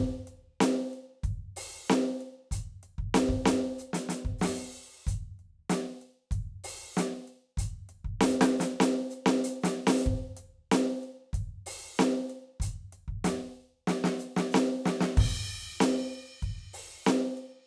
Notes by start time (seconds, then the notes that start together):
0.27 closed hi-hat
0.60 closed hi-hat, snare
0.93 closed hi-hat
1.23 kick, closed hi-hat
1.56 open hi-hat
1.88 snare, closed hi-hat, hi-hat pedal
2.21 closed hi-hat
2.51 closed hi-hat, kick
2.83 closed hi-hat
2.98 kick
3.14 closed hi-hat, snare
3.29 kick
3.46 open hi-hat, snare
3.78 hi-hat pedal
3.93 closed hi-hat, snare
4.09 closed hi-hat, snare
4.25 kick
4.38 open hi-hat, snare, hi-hat pedal
5.07 closed hi-hat, kick, hi-hat pedal
5.39 closed hi-hat
5.69 closed hi-hat, snare
6.01 closed hi-hat
6.31 kick, closed hi-hat
6.64 open hi-hat
6.96 closed hi-hat, snare, hi-hat pedal
7.27 closed hi-hat
7.57 closed hi-hat, kick
7.89 closed hi-hat
8.04 kick
8.21 open hi-hat, snare
8.31 hi-hat pedal
8.41 closed hi-hat, snare
8.58 closed hi-hat, snare, hi-hat pedal
8.80 closed hi-hat, snare
9.10 hi-hat pedal
9.26 snare
9.44 closed hi-hat
9.60 snare, hi-hat pedal
9.65 closed hi-hat
9.87 open hi-hat, snare
10.04 kick, hi-hat pedal
10.37 closed hi-hat
10.71 closed hi-hat, snare
11.03 closed hi-hat
11.33 kick, closed hi-hat
11.66 open hi-hat
11.99 snare, hi-hat pedal, open hi-hat
12.29 closed hi-hat
12.60 closed hi-hat, kick
12.92 closed hi-hat
13.08 kick
13.24 closed hi-hat, snare
13.87 snare, hi-hat pedal
14.04 snare
14.19 hi-hat pedal
14.36 snare
14.51 snare, hi-hat pedal
14.86 snare
15.01 snare
15.17 kick, crash
15.80 closed hi-hat, snare
16.13 closed hi-hat
16.42 kick, closed hi-hat
16.73 open hi-hat
17.05 snare, closed hi-hat, hi-hat pedal
17.37 closed hi-hat